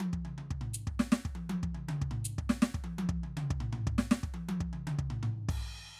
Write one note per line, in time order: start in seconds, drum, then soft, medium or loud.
0.00 high tom loud
0.13 kick medium
0.25 mid tom medium
0.38 mid tom medium
0.51 kick medium
0.61 floor tom medium
0.74 floor tom loud
0.87 kick medium
0.99 snare loud
1.12 snare loud
1.25 kick medium
1.35 high tom medium
1.50 high tom loud
1.63 kick medium
1.75 mid tom medium
1.89 mid tom loud
2.02 kick medium
2.11 floor tom loud
2.25 floor tom loud
2.38 kick medium
2.49 snare loud
2.62 snare loud
2.74 kick medium
2.84 high tom medium
2.99 high tom loud
3.09 kick medium
3.24 mid tom medium
3.37 mid tom loud
3.51 kick medium
3.61 floor tom medium
3.73 floor tom loud
3.87 kick medium
3.98 snare loud
4.11 snare loud
4.23 kick medium
4.34 high tom medium
4.49 high tom loud
4.61 kick medium
4.73 mid tom medium
4.87 mid tom loud
4.99 kick medium
5.10 floor tom medium
5.23 floor tom loud
5.49 kick loud
5.49 ride medium